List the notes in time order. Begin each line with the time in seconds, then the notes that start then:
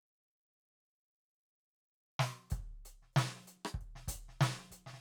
2.19 snare
2.50 closed hi-hat, kick
2.85 closed hi-hat
3.02 snare
3.13 snare, hi-hat pedal
3.36 snare
3.42 hi-hat pedal
3.47 closed hi-hat
3.65 cross-stick
3.74 kick
3.81 closed hi-hat
3.95 snare
4.08 closed hi-hat, kick
4.28 snare
4.39 snare, hi-hat pedal
4.58 snare
4.68 kick, snare
4.72 closed hi-hat
4.86 snare
4.93 snare